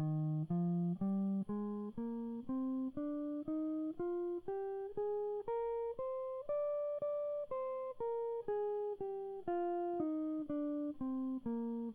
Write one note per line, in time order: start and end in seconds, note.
0.00 0.48 D#3
0.52 0.97 F3
1.02 1.46 G3
1.50 1.94 G#3
1.99 2.46 A#3
2.50 2.93 C4
2.98 3.45 D4
3.49 3.96 D#4
4.00 4.42 F4
4.49 4.96 G4
4.98 5.44 G#4
5.49 5.95 A#4
6.00 6.48 C5
6.50 7.02 D5
7.03 7.47 D5
7.52 7.95 C5
8.01 8.44 A#4
8.49 8.96 G#4
9.01 9.43 G4
9.48 10.07 F4
10.00 10.49 D#4
10.51 10.94 D4
11.02 11.42 C4
11.47 11.94 A#3